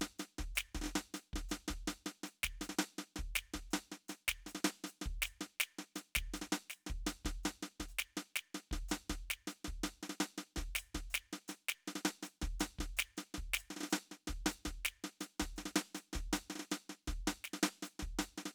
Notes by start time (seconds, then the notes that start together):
0.01 snare
0.19 snare, hi-hat pedal
0.38 kick, snare
0.55 snare, hi-hat pedal
0.75 kick, snare
0.81 snare
0.84 snare
0.86 snare
0.95 snare
1.14 snare, hi-hat pedal
1.33 kick, snare
1.49 snare, hi-hat pedal
1.68 kick, snare
1.87 snare, hi-hat pedal
2.06 snare
2.23 snare, hi-hat pedal
2.43 kick, snare
2.61 snare, hi-hat pedal
2.69 snare
2.79 snare
2.98 snare
3.16 kick, snare
3.35 snare, hi-hat pedal
3.54 kick, snare
3.70 snare, hi-hat pedal
3.92 snare
4.08 snare, hi-hat pedal
4.28 kick, snare
4.46 snare, hi-hat pedal
4.55 snare
4.64 snare
4.84 snare, hi-hat pedal
5.01 snare
5.06 kick
5.22 snare, hi-hat pedal
5.41 snare
5.60 snare, hi-hat pedal
5.78 snare
5.95 snare, hi-hat pedal
6.15 kick, snare
6.34 snare, hi-hat pedal
6.41 snare
6.52 snare
6.70 snare, hi-hat pedal
6.86 kick, snare
7.06 snare, hi-hat pedal
7.25 kick, snare
7.43 snare, hi-hat pedal
7.62 snare
7.80 kick, snare
7.88 hi-hat pedal
7.99 snare
8.17 snare
8.36 snare
8.54 snare
8.71 kick, snare
8.89 snare, hi-hat pedal
9.09 kick, snare
9.30 snare
9.47 snare, hi-hat pedal
9.64 kick, snare
9.83 snare, hi-hat pedal
10.03 snare
10.09 snare
10.20 snare
10.38 snare
10.56 kick, snare
10.58 snare
10.75 snare, hi-hat pedal
10.94 kick, snare
11.10 hi-hat pedal
11.14 snare
11.33 snare
11.48 snare, hi-hat pedal
11.68 snare
11.87 snare
11.95 snare
12.05 snare
12.23 snare, hi-hat pedal
12.41 kick, snare
12.60 snare, hi-hat pedal
12.79 kick, snare
12.97 snare, hi-hat pedal
13.17 snare, hi-hat pedal
13.34 kick, snare
13.53 snare, hi-hat pedal
13.70 snare
13.76 snare
13.80 snare
13.83 snare
13.90 snare, hi-hat pedal
14.11 snare
14.27 kick, snare
14.46 snare
14.50 hi-hat pedal
14.65 kick, snare
14.85 snare, hi-hat pedal
15.04 snare
15.21 snare, hi-hat pedal
15.40 kick, snare
15.56 snare, hi-hat pedal
15.65 snare
15.76 snare
15.95 snare, hi-hat pedal
16.13 snare
16.15 kick, snare
16.33 snare, hi-hat pedal
16.50 snare
16.55 snare
16.59 snare
16.71 snare, hi-hat pedal
16.89 snare
17.07 kick, snare
17.27 snare
17.44 snare, hi-hat pedal
17.53 snare
17.63 snare
17.82 snare, hi-hat pedal
17.99 kick, snare
18.19 snare, hi-hat pedal
18.38 snare
18.45 snare